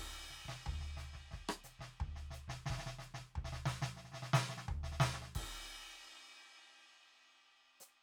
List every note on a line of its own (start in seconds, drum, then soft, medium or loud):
0.30 snare soft
0.45 kick soft
0.45 snare medium
0.66 kick soft
0.66 floor tom medium
0.81 snare soft
0.97 snare soft
0.97 hi-hat pedal soft
1.13 kick soft
1.13 snare soft
1.31 kick soft
1.31 snare soft
1.49 cross-stick medium
1.64 snare soft
1.64 hi-hat pedal medium
1.79 kick soft
1.79 snare soft
2.00 kick soft
2.00 floor tom medium
2.16 snare soft
2.31 snare soft
2.31 hi-hat pedal soft
2.48 kick soft
2.48 snare medium
2.66 kick soft
2.66 snare medium
2.71 snare medium
2.77 snare soft
2.79 snare medium
2.86 snare medium
2.99 snare soft
2.99 hi-hat pedal soft
3.14 snare medium
3.19 kick soft
3.36 kick soft
3.36 floor tom medium
3.45 snare soft
3.53 snare medium
3.66 snare medium
3.70 hi-hat pedal soft
3.82 kick soft
3.82 snare medium
3.97 snare soft
4.05 snare soft
4.12 snare soft
4.14 snare medium
4.23 snare medium
4.34 snare loud
4.49 snare medium
4.58 snare soft
4.69 kick soft
4.69 floor tom medium
4.78 kick soft
4.84 snare soft
4.92 snare soft
5.00 snare loud
5.00 hi-hat pedal soft
5.14 snare soft
5.22 snare soft
5.35 kick medium
5.35 crash medium
7.80 hi-hat pedal medium